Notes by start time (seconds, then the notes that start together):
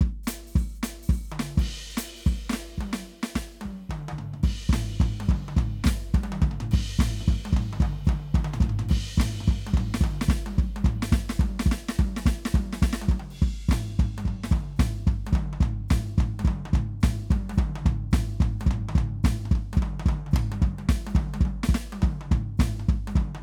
0.02 kick
0.23 snare, hi-hat pedal
0.27 closed hi-hat
0.47 open hi-hat
0.55 open hi-hat, kick
0.75 hi-hat pedal
0.83 closed hi-hat, snare
1.03 open hi-hat
1.09 open hi-hat, kick
1.30 hi-hat pedal, mid tom
1.39 snare
1.57 kick, crash
1.90 hi-hat pedal
1.97 closed hi-hat, snare
2.16 open hi-hat
2.24 open hi-hat, kick
2.45 hi-hat pedal
2.49 snare
2.53 snare
2.76 kick, hi-hat pedal
2.81 high tom
2.93 snare
3.23 snare
3.29 hi-hat pedal
3.35 kick, snare
3.61 hi-hat pedal, high tom
3.65 kick
3.89 kick, mid tom
4.08 mid tom
4.12 kick
4.18 floor tom
4.34 floor tom
4.43 kick, crash
4.68 kick, hi-hat pedal
4.73 snare, floor tom
5.00 kick, floor tom
5.20 hi-hat pedal, high tom
5.29 kick, mid tom
5.48 mid tom
5.57 kick, floor tom
5.84 kick, snare, hi-hat pedal
5.87 snare
6.14 kick, high tom
6.23 high tom
6.32 mid tom
6.42 kick, mid tom
6.51 floor tom
6.60 floor tom
6.71 kick, crash
6.97 kick, snare, hi-hat pedal
7.02 floor tom
7.20 floor tom
7.28 kick, floor tom
7.45 hi-hat pedal, high tom
7.53 kick, floor tom
7.73 mid tom
7.80 kick, mid tom
8.04 kick, hi-hat pedal
8.09 mid tom
8.34 kick, mid tom
8.44 mid tom
8.53 floor tom, hi-hat pedal
8.60 kick, floor tom
8.69 floor tom
8.79 floor tom
8.89 kick, crash
9.15 kick, hi-hat pedal
9.20 snare, floor tom
9.40 floor tom
9.48 kick
9.67 hi-hat pedal, high tom
9.74 kick, floor tom
9.94 snare
10.01 kick, mid tom
10.21 snare, hi-hat pedal
10.28 kick, snare
10.46 high tom
10.58 kick
10.76 high tom
10.84 kick, floor tom
11.02 snare
11.06 hi-hat pedal
11.12 kick, snare
11.29 snare
11.39 kick, high tom
11.59 snare, hi-hat pedal
11.66 kick
11.71 snare
11.89 snare
11.93 hi-hat pedal
11.99 kick, high tom
12.16 snare
12.22 kick, hi-hat pedal
12.26 snare
12.45 snare, hi-hat pedal
12.54 kick, high tom
12.73 snare
12.78 hi-hat pedal
12.82 kick, snare
12.93 snare
13.02 high tom
13.08 kick, high tom
13.19 mid tom
13.30 ride
13.42 kick
13.68 kick, snare, hi-hat pedal
13.73 floor tom
13.99 kick, floor tom
14.17 hi-hat pedal, high tom
14.25 kick, floor tom
14.43 snare
14.51 kick, mid tom
14.76 kick, snare, floor tom, hi-hat pedal
15.07 kick, floor tom
15.25 hi-hat pedal, high tom
15.33 kick, mid tom
15.53 mid tom
15.60 kick, floor tom
15.88 kick, snare, floor tom, hi-hat pedal
16.18 kick, floor tom
16.39 hi-hat pedal, high tom
16.45 kick, mid tom
16.65 mid tom
16.73 kick, floor tom
17.00 kick, snare, floor tom, hi-hat pedal
17.30 kick, high tom
17.49 hi-hat pedal, high tom
17.58 kick, mid tom
17.75 mid tom
17.86 kick, floor tom
18.11 kick, snare, floor tom, hi-hat pedal
18.40 kick, floor tom
18.60 hi-hat pedal, high tom
18.66 kick
18.71 floor tom
18.89 mid tom
18.95 kick, floor tom
19.23 kick, snare, floor tom, hi-hat pedal
19.45 floor tom
19.51 kick
19.55 floor tom
19.73 kick, hi-hat pedal, high tom
19.82 mid tom
19.99 mid tom
20.06 kick, mid tom
20.26 mid tom
20.31 kick, hi-hat pedal
20.36 floor tom
20.52 high tom
20.62 kick, mid tom
20.78 high tom
20.89 kick, snare
21.07 hi-hat pedal, high tom
21.15 kick, mid tom
21.34 high tom
21.41 kick
21.45 mid tom
21.63 snare
21.68 kick, hi-hat pedal
21.74 snare
21.92 high tom
22.02 kick, mid tom
22.21 mid tom
22.31 kick, floor tom
22.57 kick, snare, floor tom, hi-hat pedal
22.79 floor tom
22.89 kick, floor tom
23.07 hi-hat pedal, high tom
23.15 kick, mid tom
23.35 mid tom